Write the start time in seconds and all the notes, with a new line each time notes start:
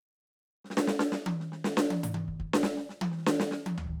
0.64 snare
0.70 snare
0.77 snare
0.87 snare
0.99 snare
1.12 snare
1.26 high tom
1.40 snare
1.52 snare
1.64 snare
1.77 snare
1.90 high tom
2.03 mid tom
2.14 high tom
2.28 kick
2.40 kick
2.53 snare
2.63 snare
2.77 snare
2.89 snare
3.01 high tom
3.12 snare
3.17 snare
3.21 snare
3.27 snare
3.40 snare
3.51 snare
3.66 high tom
3.78 floor tom
3.87 kick